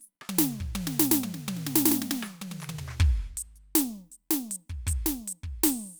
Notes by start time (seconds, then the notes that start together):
0.01 hi-hat pedal
0.21 cross-stick
0.29 high tom
0.39 snare, hi-hat pedal
0.60 kick
0.73 hi-hat pedal, high tom
0.87 snare
1.00 snare
1.11 snare
1.23 high tom
1.34 snare
1.48 hi-hat pedal, high tom
1.57 snare
1.67 snare
1.76 snare
1.86 snare
1.92 snare
2.02 snare
2.11 snare
2.23 cross-stick, hi-hat pedal
2.42 high tom
2.51 high tom
2.60 percussion, hi-hat pedal
2.69 kick, mid tom
2.79 floor tom
2.88 percussion
3.00 kick
3.37 closed hi-hat
3.56 closed hi-hat
3.75 closed hi-hat, snare
4.12 closed hi-hat
4.31 snare
4.51 closed hi-hat
4.69 kick, closed hi-hat
4.87 closed hi-hat, kick
5.06 snare
5.28 closed hi-hat
5.43 kick
5.64 open hi-hat, snare